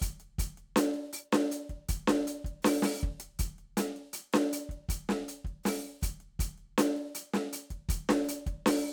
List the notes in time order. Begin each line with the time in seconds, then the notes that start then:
0.01 closed hi-hat, kick, hi-hat pedal
0.20 closed hi-hat
0.38 closed hi-hat, kick
0.57 closed hi-hat
0.76 closed hi-hat, snare
0.94 closed hi-hat
1.12 open hi-hat, hi-hat pedal
1.32 snare, closed hi-hat
1.51 closed hi-hat
1.69 kick, closed hi-hat
1.89 closed hi-hat, kick
2.08 snare
2.27 closed hi-hat
2.44 kick, closed hi-hat
2.62 open hi-hat, snare, hi-hat pedal
2.82 open hi-hat, snare
3.01 kick, hi-hat pedal
3.20 closed hi-hat
3.39 closed hi-hat, kick
3.58 closed hi-hat
3.77 closed hi-hat, snare
3.96 closed hi-hat
4.13 closed hi-hat
4.33 snare, closed hi-hat
4.53 closed hi-hat
4.69 kick, closed hi-hat
4.89 closed hi-hat, kick
5.09 snare, closed hi-hat
5.28 closed hi-hat
5.45 kick, closed hi-hat
5.64 open hi-hat, snare, hi-hat pedal
6.01 closed hi-hat, kick, hi-hat pedal
6.20 closed hi-hat
6.39 closed hi-hat, kick
6.58 closed hi-hat
6.78 closed hi-hat, snare
6.96 closed hi-hat
7.15 closed hi-hat
7.34 snare, closed hi-hat
7.53 closed hi-hat
7.70 kick, closed hi-hat
7.89 open hi-hat, kick
8.09 snare
8.24 hi-hat pedal
8.29 closed hi-hat
8.46 kick, closed hi-hat
8.66 open hi-hat, snare